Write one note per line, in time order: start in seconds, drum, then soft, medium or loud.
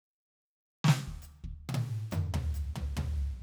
0.84 snare medium
0.88 snare loud
1.07 kick soft
1.22 percussion medium
1.44 kick soft
1.69 high tom loud
1.74 high tom loud
2.11 mid tom loud
2.11 percussion medium
2.34 floor tom loud
2.54 percussion medium
2.76 floor tom loud
2.97 floor tom loud